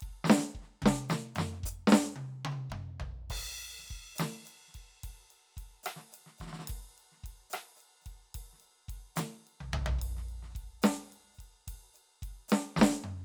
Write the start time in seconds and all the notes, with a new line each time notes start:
0.01 kick, ride
0.09 kick
0.25 snare, hi-hat pedal
0.30 snare
0.38 snare
0.55 kick
0.63 snare
0.82 kick, snare, high tom
0.89 kick
1.10 snare, hi-hat pedal
1.35 snare, hi-hat pedal, mid tom
1.53 snare
1.64 kick, hi-hat pedal
1.71 kick
1.88 snare
1.93 snare
2.16 high tom
2.45 high tom
2.52 high tom
2.70 kick, mid tom, high tom
3.00 kick, floor tom
3.30 kick, crash
3.41 kick
3.79 snare
3.82 snare
3.88 kick, ride
3.97 kick
4.16 hi-hat pedal, ride
4.20 snare
4.43 snare, hi-hat pedal
4.47 ride
4.68 snare
4.75 kick, ride
5.04 kick, ride
5.10 kick
5.30 hi-hat pedal, ride
5.57 kick, ride
5.84 cross-stick, hi-hat pedal, ride
5.97 snare
6.12 hi-hat pedal, ride
6.27 snare
6.38 kick, snare, hi-hat pedal
6.47 snare
6.52 snare
6.59 snare
6.65 snare, ride
6.70 kick
6.76 kick
6.98 ride
7.12 snare
7.17 snare
7.24 kick, ride
7.30 kick
7.50 cross-stick, hi-hat pedal, ride
7.76 hi-hat pedal
7.81 ride
8.02 snare, hi-hat pedal
8.06 kick, ride
8.35 kick, ride
8.41 kick
8.53 snare
8.59 snare, hi-hat pedal, ride
8.89 kick, ride
8.95 kick
9.16 snare, hi-hat pedal, ride
9.47 ride
9.61 floor tom
9.73 kick, floor tom
9.86 floor tom
9.99 kick, ride
10.05 kick
10.17 snare
10.29 ride
10.43 snare
10.48 snare
10.52 kick, snare
10.57 ride
10.62 kick
10.82 snare, hi-hat pedal, ride
11.07 hi-hat pedal
11.13 ride
11.34 hi-hat pedal
11.39 kick, ride
11.68 kick, ride
11.74 kick
11.94 hi-hat pedal, ride
12.23 kick, ride
12.29 kick
12.49 snare, hi-hat pedal, ride
12.77 kick, snare
12.82 snare
12.90 snare
13.04 mid tom
13.17 snare
13.22 snare